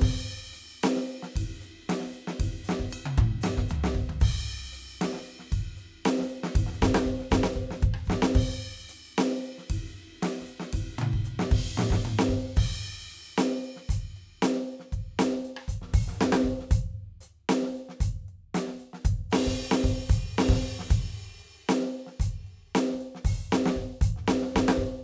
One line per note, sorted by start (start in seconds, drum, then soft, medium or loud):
0.01 kick loud
0.01 hi-hat pedal medium
0.01 crash loud
0.53 hi-hat pedal medium
0.53 ride soft
0.84 snare loud
0.84 ride loud
0.97 snare medium
1.08 hi-hat pedal soft
1.08 ride soft
1.23 snare medium
1.36 kick medium
1.36 ride loud
1.61 hi-hat pedal medium
1.61 ride soft
1.90 snare loud
1.90 ride loud
2.01 snare soft
2.04 kick soft
2.04 snare soft
2.06 snare soft
2.10 snare soft
2.10 hi-hat pedal medium
2.15 ride soft
2.28 snare loud
2.40 kick loud
2.40 ride loud
2.65 hi-hat pedal medium
2.65 ride bell medium
2.69 snare loud
2.80 kick medium
2.80 snare soft
2.90 hi-hat pedal medium
2.90 ride bell loud
3.06 high tom loud
3.18 kick loud
3.18 mid tom loud
3.42 snare loud
3.42 hi-hat pedal medium
3.42 ride bell loud
3.58 kick medium
3.58 snare medium
3.69 floor tom loud
3.69 hi-hat pedal medium
3.84 snare loud
3.95 kick medium
4.10 floor tom loud
4.21 kick loud
4.21 hi-hat pedal medium
4.21 crash loud
4.73 hi-hat pedal medium
4.73 ride soft
5.02 snare loud
5.02 ride loud
5.14 snare medium
5.17 kick soft
5.17 snare soft
5.25 hi-hat pedal medium
5.25 ride soft
5.40 snare soft
5.52 kick loud
5.52 ride bell medium
5.77 hi-hat pedal soft
5.77 ride soft
6.06 snare loud
6.06 ride loud
6.19 kick soft
6.19 snare medium
6.22 snare medium
6.25 snare soft
6.25 hi-hat pedal soft
6.31 ride soft
6.44 snare loud
6.56 kick loud
6.56 hi-hat pedal medium
6.56 ride loud
6.67 snare medium
6.73 snare soft
6.77 snare soft
6.82 kick loud
6.82 snare loud
6.82 hi-hat pedal soft
6.95 snare loud
7.05 kick medium
7.05 hi-hat pedal soft
7.20 snare soft
7.31 kick loud
7.31 snare loud
7.31 hi-hat pedal medium
7.44 snare loud
7.56 kick medium
7.56 snare soft
7.71 snare medium
7.82 kick loud
7.82 hi-hat pedal medium
7.94 cross-stick medium
8.06 kick medium
8.06 hi-hat pedal soft
8.10 snare loud
8.23 snare loud
8.35 kick loud
8.35 crash loud
8.89 hi-hat pedal medium
8.89 ride medium
9.19 snare loud
9.19 ride loud
9.41 hi-hat pedal soft
9.41 ride soft
9.59 snare soft
9.70 kick medium
9.70 ride loud
9.95 hi-hat pedal soft
9.95 ride soft
10.23 snare loud
10.23 ride loud
10.40 kick soft
10.40 snare soft
10.47 hi-hat pedal medium
10.47 ride soft
10.60 snare medium
10.73 kick medium
10.73 ride loud
10.98 hi-hat pedal medium
10.98 mid tom loud
10.98 high tom loud
11.14 kick medium
11.25 hi-hat pedal medium
11.25 ride soft
11.25 floor tom soft
11.40 snare loud
11.52 kick loud
11.52 ride loud
11.76 snare loud
11.76 hi-hat pedal medium
11.76 mid tom loud
11.91 kick loud
11.91 snare loud
12.03 hi-hat pedal soft
12.03 mid tom loud
12.19 snare loud
12.28 kick medium
12.28 hi-hat pedal soft
12.55 kick loud
12.55 hi-hat pedal soft
12.55 crash loud
13.38 closed hi-hat loud
13.38 snare loud
13.53 snare soft
13.56 snare soft
13.66 closed hi-hat soft
13.77 snare soft
13.90 closed hi-hat loud
13.90 kick loud
14.17 closed hi-hat soft
14.43 closed hi-hat loud
14.43 snare loud
14.54 snare soft
14.56 snare soft
14.69 closed hi-hat soft
14.80 snare soft
14.93 kick medium
14.93 closed hi-hat medium
15.20 closed hi-hat loud
15.20 snare loud
15.32 snare soft
15.45 closed hi-hat medium
15.57 cross-stick medium
15.68 closed hi-hat loud
15.68 kick medium
15.82 snare soft
15.88 snare soft
15.92 open hi-hat loud
15.92 kick loud
15.92 snare soft
16.08 snare soft
16.12 snare soft
16.14 snare soft
16.16 snare soft
16.20 snare loud
16.20 hi-hat pedal medium
16.33 snare loud
16.45 kick medium
16.60 snare soft
16.71 closed hi-hat loud
16.71 kick loud
17.21 closed hi-hat medium
17.21 hi-hat pedal medium
17.50 closed hi-hat loud
17.50 snare loud
17.62 snare soft
17.65 snare soft
17.69 kick soft
17.76 closed hi-hat soft
17.89 snare soft
18.01 closed hi-hat loud
18.01 kick loud
18.29 closed hi-hat soft
18.55 closed hi-hat loud
18.55 snare loud
18.68 snare soft
18.71 kick soft
18.71 snare soft
18.76 closed hi-hat soft
18.76 snare soft
18.94 snare medium
19.05 kick loud
19.05 closed hi-hat loud
19.28 kick soft
19.28 hi-hat pedal soft
19.32 snare loud
19.32 crash loud
19.47 kick medium
19.47 snare medium
19.57 snare soft
19.72 snare loud
19.84 closed hi-hat medium
19.84 kick loud
20.10 closed hi-hat loud
20.10 kick loud
20.17 snare soft
20.35 snare loud
20.35 hi-hat pedal soft
20.35 crash loud
20.49 kick loud
20.49 snare medium
20.55 snare medium
20.62 snare soft
20.80 snare medium
20.88 closed hi-hat loud
20.88 kick loud
20.88 snare soft
21.40 closed hi-hat soft
21.69 closed hi-hat loud
21.69 snare loud
21.81 snare soft
21.84 snare soft
21.90 snare soft
22.07 snare soft
22.20 closed hi-hat loud
22.20 kick loud
22.47 closed hi-hat soft
22.76 closed hi-hat loud
22.76 snare loud
22.91 kick soft
22.91 snare soft
22.95 snare soft
23.01 closed hi-hat soft
23.15 snare soft
23.25 open hi-hat loud
23.25 kick loud
23.25 snare soft
23.52 snare loud
23.52 hi-hat pedal medium
23.66 snare loud
23.77 kick medium
24.02 closed hi-hat loud
24.02 kick loud
24.17 snare soft
24.23 snare soft
24.27 snare loud
24.27 hi-hat pedal medium
24.42 snare soft
24.46 snare soft
24.49 snare soft
24.51 snare soft
24.56 kick medium
24.56 snare loud
24.69 snare loud
24.78 kick medium